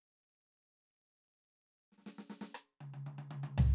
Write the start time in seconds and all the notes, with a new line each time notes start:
1.92 snare
1.98 snare
2.06 snare
2.18 snare
2.30 snare
2.41 snare
2.54 cross-stick
2.80 high tom
2.93 high tom
3.06 high tom
3.18 high tom
3.31 high tom
3.43 closed hi-hat, high tom
3.58 floor tom